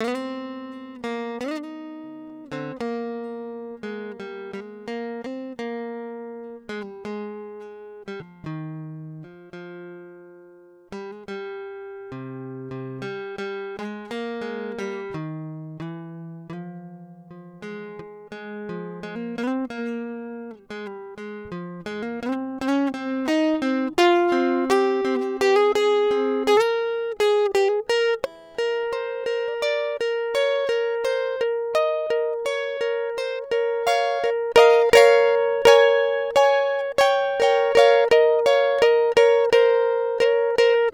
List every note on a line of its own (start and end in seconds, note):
0.01 1.01 C4
1.05 1.41 A#3
1.42 1.60 D4
2.52 2.77 D3
2.52 2.77 C4
2.82 3.81 A#3
3.84 4.18 G#3
3.84 4.19 A#3
4.21 4.54 G3
4.21 4.38 A#3
4.55 4.63 G3
4.89 5.23 A#3
5.26 5.57 C4
5.60 6.61 A#3
6.70 6.82 G#3
6.83 7.05 G3
7.06 7.61 G#3
7.62 8.06 G#3
8.09 8.19 G3
8.21 8.39 F3
8.45 9.31 D#3
9.26 9.52 F3
9.54 10.91 F3
10.93 11.12 G3
11.12 11.27 G#3
11.29 13.02 F#3
12.13 12.71 C3
12.72 13.10 C3
13.03 13.38 G3
13.40 13.79 G3
13.80 14.22 G#3
14.12 15.15 A#3
14.43 14.77 G#3
14.79 15.24 G3
15.16 15.80 D#3
15.81 16.50 E3
16.51 17.15 F3
17.32 17.68 F3
17.63 18.31 G#3
18.33 19.03 G#3
18.70 19.47 F3
19.04 19.17 G#3
19.17 19.37 A#3
19.39 19.49 B3
19.49 19.70 C4
19.71 20.56 A#3
20.71 20.87 G#3
20.87 21.17 G3
21.19 21.51 G#3
21.53 21.85 F3
21.87 22.03 G#3
22.04 22.22 A#3
22.24 22.61 C4
22.62 22.94 C#4
22.95 23.35 C4
23.29 23.62 D#4
23.63 23.93 C4
23.99 24.69 F4
24.33 25.03 C4
24.71 25.39 G4
25.06 25.21 C4
25.42 25.57 G4
25.57 25.75 G#4
25.77 26.46 G#4
26.12 26.59 C4
26.48 26.58 G#4
26.58 27.17 A#4
27.21 27.54 G#4
27.56 27.70 G4
27.70 27.86 G#4
27.91 28.20 A#4
28.60 29.27 A#4
28.94 29.58 C5
29.27 30.00 A#4
29.63 30.01 D5
30.02 30.67 A#4
30.36 30.72 C#5
30.70 31.39 A#4
31.05 31.49 C5
31.42 32.09 A#4
31.76 32.40 D#5
32.11 32.79 A#4
32.47 33.14 C#5
32.82 33.48 A#4
33.19 33.43 C5
33.52 34.21 A#4
33.52 33.84 C#5
33.88 34.26 C#5
33.88 34.35 F5
34.25 34.54 A#4
34.25 34.36 C#5
34.57 34.94 A#4
34.57 34.89 D#5
34.57 34.93 F5
34.94 35.66 A#4
34.94 35.68 C#5
34.94 35.41 F5
35.66 37.40 A#4
35.66 36.33 C#5
35.66 36.33 G#5
36.37 36.95 C#5
36.37 36.85 G#5
36.99 37.42 C#5
36.99 37.45 G5
37.41 37.73 A#4
37.41 37.78 C#5
37.41 37.74 G5
37.76 38.12 A#4
37.76 38.09 C#5
37.76 38.09 F5
38.12 38.81 A#4
38.12 38.45 D#5
38.47 38.84 C#5
38.47 38.92 F5
38.83 39.16 A#4
38.83 39.14 D#5
39.18 39.53 A#4
39.18 39.50 C#5
39.54 40.21 A#4
39.54 40.22 C5
40.21 40.59 A#4
40.21 40.55 C#5
40.59 40.92 A#4
40.59 40.79 C5